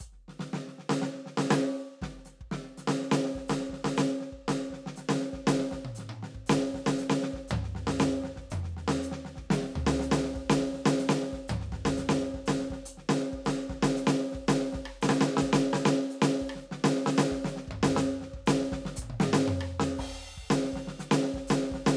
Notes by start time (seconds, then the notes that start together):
0.00 closed hi-hat, kick
0.12 snare
0.28 snare
0.39 snare
0.53 snare
0.67 snare
0.78 snare
0.89 snare
0.98 snare
1.02 snare
1.14 snare
1.26 snare
1.37 snare
1.44 snare
1.50 snare
1.56 cross-stick
1.90 snare
2.01 kick, snare
2.18 snare
2.25 snare, hi-hat pedal
2.39 kick, snare
2.51 snare
2.63 snare
2.77 snare, hi-hat pedal
2.87 snare
3.01 snare
3.11 snare
3.16 cross-stick
3.25 snare
3.35 kick, snare
3.48 snare, hi-hat pedal
3.60 snare
3.69 kick, snare
3.84 snare
3.96 snare, hi-hat pedal
4.20 snare
4.32 kick, snare
4.48 snare, hi-hat pedal
4.59 snare
4.65 snare
4.70 kick, snare
4.86 snare
4.96 snare, hi-hat pedal
5.09 snare
5.14 snare
5.21 snare
5.33 kick, snare
5.47 snare, hi-hat pedal
5.58 snare
5.71 kick, snare
5.85 high tom
5.95 snare, hi-hat pedal
6.09 high tom
6.23 snare
6.34 kick
6.46 snare, hi-hat pedal
6.59 snare
6.74 kick, snare
6.86 snare
6.98 snare, hi-hat pedal
7.10 snare
7.23 snare
7.33 kick, snare
7.48 hi-hat pedal, floor tom
7.63 snare
7.75 snare
7.87 snare
7.99 snare, hi-hat pedal
8.15 snare
8.24 snare
8.36 kick, snare
8.50 hi-hat pedal, mid tom
8.63 snare
8.77 snare
8.88 snare
8.99 snare, hi-hat pedal
9.11 snare
9.24 snare, hi-hat pedal
9.36 kick, snare
9.50 snare, hi-hat pedal
9.62 snare
9.75 floor tom
9.86 snare
10.00 snare, hi-hat pedal
10.11 snare
10.16 snare
10.24 snare
10.35 kick
10.50 snare, hi-hat pedal
10.59 snare
10.73 snare
10.86 snare
10.99 snare, hi-hat pedal
11.09 snare
11.13 cross-stick
11.22 snare
11.32 kick, snare
11.48 hi-hat pedal, floor tom
11.60 snare
11.72 kick, snare
11.78 kick
11.85 snare
11.97 snare, hi-hat pedal
12.09 snare
12.16 snare
12.21 snare
12.34 kick, snare
12.46 snare, hi-hat pedal
12.60 snare
12.70 kick, snare
12.85 closed hi-hat
12.97 snare
13.09 snare
13.19 snare
13.31 kick, snare
13.45 snare, hi-hat pedal
13.56 snare
13.69 kick, snare
13.82 snare
13.95 snare, hi-hat pedal
14.07 snare
14.11 cross-stick
14.18 snare
14.31 kick, snare
14.42 kick
14.48 snare, hi-hat pedal
14.60 snare
14.72 kick, snare
14.85 cross-stick
15.01 snare, hi-hat pedal
15.09 snare
15.21 snare
15.37 snare
15.41 kick
15.53 snare, hi-hat pedal
15.73 snare
15.85 snare
16.10 hi-hat pedal
16.22 snare
16.41 kick
16.49 cross-stick
16.55 snare
16.61 hi-hat pedal
16.71 snare
16.84 snare
16.96 snare
17.06 snare
17.17 snare, hi-hat pedal
17.31 kick, snare
17.44 snare, hi-hat pedal
17.56 snare
17.68 kick, floor tom
17.83 snare
17.96 snare, hi-hat pedal
18.21 snare
18.33 kick, snare
18.46 snare, hi-hat pedal
18.61 snare
18.72 kick, snare
18.77 kick
18.80 kick
18.85 snare
18.96 kick, hi-hat pedal
19.02 kick, high tom
19.08 kick, high tom
19.20 snare
19.33 snare
19.48 mid tom
19.61 cross-stick
19.80 snare
19.98 kick, hi-hat pedal, crash
20.05 kick
20.08 kick
20.37 kick
20.50 snare, hi-hat pedal
20.64 snare
20.73 kick, snare
20.87 snare
20.99 snare, hi-hat pedal
21.11 snare
21.23 snare
21.33 kick, snare
21.41 kick
21.47 snare, hi-hat pedal
21.63 snare
21.71 kick, snare
21.86 snare